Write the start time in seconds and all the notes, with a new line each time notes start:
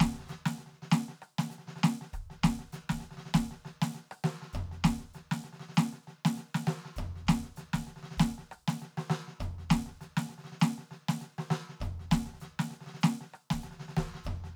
0.01 kick, snare
0.14 snare
0.20 snare
0.25 snare
0.30 snare, hi-hat pedal
0.47 snare
0.59 snare
0.67 snare
0.74 snare
0.83 snare
0.91 snare, hi-hat pedal
1.09 snare
1.23 cross-stick
1.40 snare
1.51 snare, hi-hat pedal
1.59 snare
1.67 snare
1.69 snare
1.84 snare
2.02 snare
2.14 kick, cross-stick, hi-hat pedal
2.20 kick
2.23 kick
2.31 snare
2.44 kick, snare
2.54 kick
2.60 snare
2.73 snare, hi-hat pedal
2.90 kick, snare
3.01 snare
3.12 snare
3.18 snare
3.26 snare
3.35 kick, snare, hi-hat pedal
3.41 kick
3.52 snare
3.66 snare
3.83 snare
3.93 snare, hi-hat pedal
4.12 cross-stick
4.25 snare
4.43 snare
4.54 kick, floor tom, hi-hat pedal
4.61 kick
4.64 kick
4.72 snare
4.85 kick, snare
4.92 kick
5.00 snare
5.15 snare, hi-hat pedal
5.32 snare
5.45 snare
5.54 snare
5.61 snare
5.70 snare
5.75 snare, hi-hat pedal
5.94 snare
6.08 snare
6.26 snare
6.36 snare, hi-hat pedal
6.56 snare
6.68 snare
6.86 snare
6.97 kick, floor tom, hi-hat pedal
7.07 kick
7.17 snare
7.28 kick, snare
7.35 kick
7.44 snare
7.57 snare, hi-hat pedal
7.74 kick, snare
7.88 snare
7.97 snare
8.04 snare
8.12 snare
8.18 kick, snare, hi-hat pedal
8.24 kick
8.39 snare
8.52 cross-stick
8.69 snare
8.80 snare, hi-hat pedal
8.98 snare
9.11 snare
9.29 snare
9.41 kick, floor tom, hi-hat pedal
9.47 kick
9.50 kick
9.59 snare
9.71 kick, snare
9.87 snare
10.02 snare, hi-hat pedal
10.18 snare
10.30 snare
10.39 snare
10.45 snare
10.53 snare
10.61 snare, hi-hat pedal
10.79 snare
10.92 snare
11.10 snare
11.21 snare, hi-hat pedal
11.39 snare
11.52 snare
11.70 snare
11.81 kick, floor tom, hi-hat pedal
11.88 kick
11.91 kick
12.01 snare
12.12 kick, snare
12.19 kick
12.27 snare
12.35 snare
12.41 snare, hi-hat pedal
12.60 snare
12.72 snare
12.82 snare
12.87 snare
12.95 snare
13.02 snare, hi-hat pedal
13.22 snare
13.35 cross-stick
13.51 kick, snare
13.62 snare, hi-hat pedal
13.72 snare
13.79 snare
13.98 kick, snare
14.05 kick
14.15 snare
14.25 kick, floor tom, hi-hat pedal
14.32 kick
14.45 snare